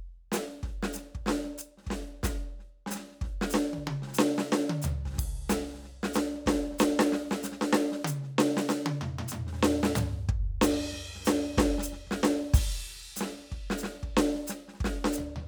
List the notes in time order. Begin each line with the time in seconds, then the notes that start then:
0.32 snare, hi-hat pedal
0.35 snare
0.48 snare
0.54 snare
0.63 kick, snare
0.67 snare
0.83 snare
0.94 snare, hi-hat pedal
1.15 kick
1.27 snare
1.29 snare
1.34 snare
1.44 snare
1.58 snare, hi-hat pedal
1.78 snare
1.83 snare
1.86 kick, snare
1.89 snare
1.91 snare
2.24 kick, cross-stick, snare, hi-hat pedal
2.60 snare
2.87 snare
2.91 snare, hi-hat pedal
2.95 snare
2.99 snare
3.03 snare
3.07 snare
3.12 snare
3.17 snare
3.22 kick, snare
3.42 snare
3.50 hi-hat pedal
3.54 snare
3.74 high tom
3.78 kick
3.88 high tom
4.03 snare
4.08 snare
4.12 snare, hi-hat pedal
4.17 snare
4.19 snare
4.39 snare
4.53 snare
4.70 high tom
4.82 floor tom, hi-hat pedal
5.06 kick, snare
5.10 snare
5.14 snare
5.16 snare
5.18 kick, snare, ride
5.50 snare, hi-hat pedal
5.69 snare
5.74 snare
5.78 snare
5.82 snare
5.84 snare
6.04 snare
6.14 snare, hi-hat pedal
6.34 snare
6.47 kick, snare
6.53 snare
6.65 snare
6.72 snare
6.76 snare, hi-hat pedal
6.79 snare
7.00 snare
7.13 snare
7.32 snare
7.44 snare, hi-hat pedal
7.53 snare
7.62 snare
7.73 snare
7.92 snare
8.05 hi-hat pedal, high tom
8.23 snare
8.39 snare
8.58 snare
8.70 snare, hi-hat pedal
8.87 high tom
9.02 mid tom
9.19 mid tom
9.28 hi-hat pedal
9.33 mid tom
9.47 snare
9.53 snare
9.58 snare
9.63 snare
9.84 snare
9.96 hi-hat pedal, floor tom
10.29 kick
10.62 snare, hi-hat pedal, ride
10.82 snare
10.93 snare
11.16 snare
11.20 snare
11.23 snare, hi-hat pedal
11.26 snare
11.28 snare
11.44 snare
11.50 snare
11.53 snare
11.57 kick, snare
11.63 snare
11.79 snare
11.83 hi-hat pedal
11.93 snare
12.08 kick
12.12 snare
12.24 snare
12.54 kick, snare, hi-hat pedal, crash
12.76 crash
13.17 snare, hi-hat pedal
13.21 snare
13.26 snare
13.33 snare
13.36 snare
13.39 snare
13.43 snare
13.52 kick, snare
13.71 snare
13.78 hi-hat pedal
13.84 snare
14.03 kick
14.17 snare
14.35 snare
14.48 snare, hi-hat pedal
14.69 snare
14.74 snare
14.78 kick, snare
14.82 snare
14.85 snare
15.05 snare
15.13 hi-hat pedal
15.19 floor tom
15.36 floor tom